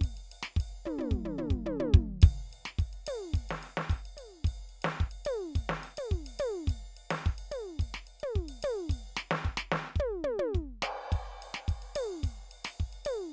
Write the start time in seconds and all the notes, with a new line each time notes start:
0.01 kick, hi-hat pedal, ride
0.17 ride
0.32 ride
0.43 snare
0.55 kick, hi-hat pedal
0.60 ride
0.85 floor tom, high tom
0.98 floor tom, high tom
1.11 kick, hi-hat pedal
1.24 floor tom, high tom
1.38 floor tom, high tom
1.50 kick, hi-hat pedal
1.65 floor tom, high tom
1.79 floor tom, high tom
1.94 kick
2.22 kick, ride
2.53 ride
2.65 snare
2.77 kick, hi-hat pedal, ride
2.93 ride
3.07 high tom, ride
3.34 kick, hi-hat pedal, ride
3.49 snare, ride
3.63 ride
3.77 snare
3.89 kick, hi-hat pedal, ride
4.05 ride
4.16 high tom, ride
4.44 kick, hi-hat pedal, ride
4.69 ride
4.82 snare, ride
5.00 kick, hi-hat pedal
5.11 ride
5.25 high tom, ride
5.55 kick, hi-hat pedal, ride
5.69 snare
5.83 ride
5.97 high tom, ride
6.10 kick, hi-hat pedal
6.26 ride
6.39 high tom, ride
6.65 kick, hi-hat pedal, ride
6.97 ride
7.11 snare, ride
7.23 kick, hi-hat pedal
7.38 ride
7.51 high tom, ride
7.79 kick, hi-hat pedal, ride
7.94 snare
8.07 ride
8.20 high tom, ride
8.36 kick, hi-hat pedal
8.48 ride
8.63 high tom, ride
8.89 kick, hi-hat pedal, ride
9.17 snare
9.31 snare
9.44 kick, hi-hat pedal
9.57 snare
9.72 snare
9.96 kick, hi-hat pedal, high tom
10.24 high tom
10.39 high tom
10.55 kick, hi-hat pedal
10.82 snare, crash
11.11 kick, hi-hat pedal, ride
11.42 hi-hat pedal, ride
11.54 snare
11.67 kick, hi-hat pedal, ride
11.82 ride
11.95 high tom, ride
12.23 kick, hi-hat pedal, ride
12.51 ride
12.65 snare, ride
12.78 kick, hi-hat pedal
12.93 ride
13.05 high tom, ride